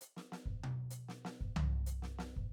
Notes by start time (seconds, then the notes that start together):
0.01 hi-hat pedal
0.17 snare
0.32 snare
0.46 kick
0.64 high tom
0.91 hi-hat pedal
1.09 snare
1.25 snare
1.41 kick
1.56 floor tom
1.86 hi-hat pedal
2.02 snare
2.19 snare
2.36 kick